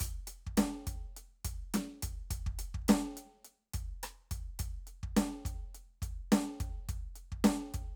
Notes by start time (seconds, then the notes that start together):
0.00 closed hi-hat, kick
0.27 closed hi-hat
0.47 kick
0.57 snare, closed hi-hat
0.87 kick, closed hi-hat
1.17 closed hi-hat
1.45 kick, closed hi-hat
1.74 snare, closed hi-hat
2.03 kick, closed hi-hat
2.30 kick, closed hi-hat
2.46 kick
2.59 closed hi-hat
2.74 kick
2.81 kick
2.88 snare, closed hi-hat
3.17 closed hi-hat
3.45 closed hi-hat
3.74 kick, closed hi-hat
4.03 cross-stick, closed hi-hat
4.31 kick, closed hi-hat
4.59 kick, closed hi-hat
4.87 closed hi-hat
5.03 kick
5.17 snare, closed hi-hat
5.45 kick, closed hi-hat
5.75 closed hi-hat
6.02 kick, closed hi-hat
6.32 snare, closed hi-hat
6.60 kick, closed hi-hat
6.89 kick, closed hi-hat
7.16 closed hi-hat
7.32 kick
7.44 snare, closed hi-hat
7.74 kick, closed hi-hat